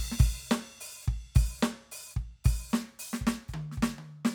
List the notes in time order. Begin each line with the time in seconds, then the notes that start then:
0.12 snare
0.19 open hi-hat, kick
0.51 snare, hi-hat pedal
0.81 open hi-hat
1.03 hi-hat pedal
1.08 kick
1.35 open hi-hat, kick
1.59 hi-hat pedal
1.63 snare
1.92 open hi-hat
2.11 hi-hat pedal
2.17 kick
2.45 open hi-hat, kick
2.71 snare, hi-hat pedal
3.00 open hi-hat
3.14 snare, hi-hat pedal
3.22 kick
3.27 snare
3.49 kick, hi-hat pedal
3.54 high tom
3.72 snare, hi-hat pedal
3.78 kick
3.83 snare
3.89 hi-hat pedal
3.99 high tom
4.25 snare